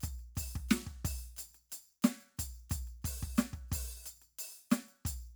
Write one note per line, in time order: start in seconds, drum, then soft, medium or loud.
0.01 percussion medium
0.03 kick medium
0.03 percussion medium
0.19 percussion soft
0.36 kick medium
0.36 percussion soft
0.38 percussion loud
0.55 kick medium
0.69 percussion soft
0.71 snare loud
0.71 percussion medium
0.87 kick soft
0.87 percussion soft
1.05 kick medium
1.05 percussion loud
1.37 percussion medium
1.38 percussion medium
1.55 percussion soft
1.70 percussion soft
1.72 percussion medium
2.02 percussion soft
2.04 snare loud
2.04 percussion loud
2.21 percussion soft
2.37 kick medium
2.37 percussion soft
2.39 percussion loud
2.70 kick medium
2.70 percussion medium
2.72 percussion loud
2.87 percussion soft
3.02 kick medium
3.02 percussion soft
3.06 percussion loud
3.23 kick medium
3.35 percussion soft
3.38 snare loud
3.38 percussion medium
3.53 kick soft
3.53 percussion soft
3.69 kick medium
3.69 percussion soft
3.73 percussion loud
4.04 percussion soft
4.06 percussion medium
4.22 percussion soft
4.39 percussion loud
4.71 snare loud
4.71 percussion soft
4.71 percussion medium
4.88 percussion soft
5.05 kick medium
5.05 percussion loud